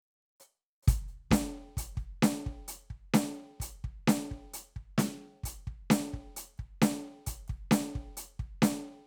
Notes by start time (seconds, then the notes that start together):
0.40 hi-hat pedal
0.83 hi-hat pedal
0.88 closed hi-hat, kick
1.08 closed hi-hat
1.31 closed hi-hat, kick, snare
1.77 closed hi-hat, kick
1.95 closed hi-hat, kick, snare
2.22 closed hi-hat, snare
2.46 kick
2.68 closed hi-hat
2.90 kick
3.14 closed hi-hat, snare
3.35 closed hi-hat
3.60 closed hi-hat, kick
3.84 kick
4.07 closed hi-hat, snare
4.31 kick
4.54 closed hi-hat
4.76 kick, closed hi-hat
4.98 closed hi-hat, snare
5.43 closed hi-hat, kick
5.67 kick, closed hi-hat
5.90 closed hi-hat, snare
6.14 kick
6.36 closed hi-hat
6.58 kick, closed hi-hat
6.82 closed hi-hat, snare
7.01 closed hi-hat
7.27 closed hi-hat, kick
7.48 kick, closed hi-hat
7.71 closed hi-hat, snare
7.95 kick
8.17 closed hi-hat
8.39 kick, closed hi-hat
8.62 closed hi-hat, snare